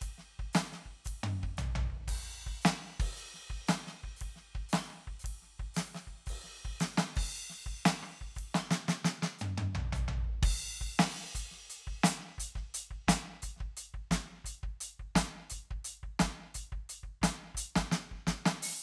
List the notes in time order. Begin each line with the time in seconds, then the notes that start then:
0.01 kick, hi-hat pedal, ride
0.18 snare
0.39 kick
0.53 snare, hi-hat pedal, ride
0.72 snare
0.85 kick
1.05 kick, hi-hat pedal, ride
1.23 high tom
1.43 kick
1.57 floor tom, hi-hat pedal
1.75 floor tom
1.90 kick
2.08 kick, hi-hat pedal, ride, crash
2.46 kick
2.62 snare, hi-hat pedal
3.00 kick, crash
3.16 hi-hat pedal, ride
3.34 snare
3.50 kick
3.67 snare, hi-hat pedal, ride
3.87 snare
4.03 kick
4.16 hi-hat pedal
4.21 kick, ride
4.36 snare
4.55 kick
4.69 hi-hat pedal
4.73 snare, ride
4.90 cross-stick
5.07 kick
5.19 hi-hat pedal
5.24 kick, ride
5.42 snare
5.59 kick
5.74 snare, hi-hat pedal, ride
5.95 snare
6.07 kick
6.26 kick, hi-hat pedal, crash
6.44 snare
6.65 kick
6.80 snare, hi-hat pedal, ride
6.97 snare
7.16 kick, crash
7.35 hi-hat pedal, ride
7.50 snare
7.66 kick
7.85 snare, hi-hat pedal, ride
8.03 cross-stick
8.21 kick
8.35 kick, hi-hat pedal, ride
8.54 snare
8.71 snare
8.88 snare, hi-hat pedal
9.05 snare
9.22 snare
9.39 hi-hat pedal, high tom
9.58 high tom
9.75 floor tom
9.92 floor tom, hi-hat pedal
10.08 floor tom
10.24 kick
10.43 kick, ride, crash
10.81 kick
10.99 snare, crash
11.35 closed hi-hat, kick
11.51 snare
11.70 closed hi-hat
11.87 kick
12.04 closed hi-hat, snare
12.19 snare
12.38 closed hi-hat, kick
12.55 kick, snare
12.60 snare
12.74 closed hi-hat
12.91 kick
13.08 closed hi-hat, kick, snare
13.23 snare
13.42 closed hi-hat, kick
13.56 kick, snare
13.77 closed hi-hat
13.94 kick
14.11 closed hi-hat, kick, snare
14.26 cross-stick
14.44 closed hi-hat, kick
14.63 kick
14.80 closed hi-hat
14.99 kick
15.15 closed hi-hat, kick, snare
15.31 snare
15.38 snare
15.50 closed hi-hat, kick
15.71 kick
15.84 closed hi-hat
16.03 kick
16.19 closed hi-hat, kick, snare
16.54 closed hi-hat, kick
16.72 kick
16.89 closed hi-hat
17.03 kick
17.22 closed hi-hat, kick, snare
17.55 closed hi-hat, kick
17.76 kick, snare
17.92 snare
18.11 kick
18.27 kick, snare
18.46 snare
18.62 open hi-hat